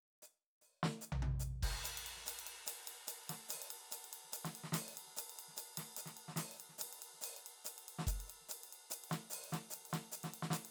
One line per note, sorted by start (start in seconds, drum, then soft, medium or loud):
0.22 hi-hat pedal medium
0.61 hi-hat pedal soft
0.83 snare medium
1.01 hi-hat pedal medium
1.12 floor tom medium
1.22 high tom medium
1.39 hi-hat pedal medium
1.62 kick medium
1.62 crash medium
1.62 ride medium
1.84 hi-hat pedal medium
1.84 ride loud
1.97 ride medium
2.04 hi-hat pedal soft
2.04 ride medium
2.16 snare soft
2.24 snare soft
2.24 hi-hat pedal medium
2.24 ride loud
2.39 ride medium
2.45 hi-hat pedal soft
2.45 ride medium
2.66 hi-hat pedal medium
2.66 ride loud
2.86 hi-hat pedal soft
2.86 ride medium
3.07 hi-hat pedal medium
3.07 ride loud
3.27 snare soft
3.27 hi-hat pedal soft
3.27 ride loud
3.49 hi-hat pedal medium
3.49 ride loud
3.54 snare soft
3.62 ride medium
3.69 hi-hat pedal soft
3.69 ride medium
3.91 hi-hat pedal medium
3.91 ride loud
4.04 ride medium
4.11 hi-hat pedal soft
4.11 ride medium
4.24 snare soft
4.32 hi-hat pedal medium
4.32 ride loud
4.44 snare soft
4.44 ride medium
4.52 hi-hat pedal soft
4.52 ride medium
4.63 snare soft
4.72 snare medium
4.72 hi-hat pedal loud
4.72 ride loud
4.88 ride medium
4.92 hi-hat pedal soft
4.97 ride medium
5.07 snare soft
5.16 hi-hat pedal loud
5.16 ride loud
5.29 ride medium
5.35 hi-hat pedal soft
5.35 ride medium
5.48 snare soft
5.56 hi-hat pedal medium
5.56 ride loud
5.75 snare soft
5.75 hi-hat pedal soft
5.75 ride loud
5.96 hi-hat pedal medium
5.96 ride medium
6.06 snare soft
6.06 ride medium
6.17 ride medium
6.28 snare soft
6.36 snare medium
6.36 hi-hat pedal medium
6.36 ride medium
6.51 ride medium
6.55 hi-hat pedal soft
6.60 ride medium
6.69 snare soft
6.78 snare soft
6.78 hi-hat pedal loud
6.78 ride loud
6.92 ride medium
6.98 hi-hat pedal soft
6.98 ride medium
7.13 snare soft
7.21 hi-hat pedal medium
7.21 ride loud
7.36 ride medium
7.46 ride medium
7.64 hi-hat pedal loud
7.64 ride medium
7.78 ride medium
7.88 ride medium
7.98 snare medium
8.07 kick medium
8.07 hi-hat pedal medium
8.07 ride medium
8.20 ride medium
8.27 hi-hat pedal soft
8.27 ride medium
8.41 snare soft
8.48 hi-hat pedal medium
8.48 ride loud
8.63 ride medium
8.68 hi-hat pedal soft
8.72 ride medium
8.90 hi-hat pedal loud
8.90 ride loud
9.04 ride medium
9.09 snare medium
9.09 hi-hat pedal soft
9.09 ride medium
9.30 hi-hat pedal loud
9.30 ride medium
9.44 ride medium
9.49 snare medium
9.49 hi-hat pedal soft
9.54 ride medium
9.70 hi-hat pedal loud
9.70 ride medium
9.85 ride medium
9.89 snare medium
9.89 hi-hat pedal soft
9.94 ride medium
10.12 hi-hat pedal loud
10.12 ride medium
10.23 snare soft
10.23 ride medium
10.31 hi-hat pedal soft
10.31 ride medium
10.42 snare medium
10.50 snare medium
10.50 hi-hat pedal loud
10.50 ride medium
10.65 ride medium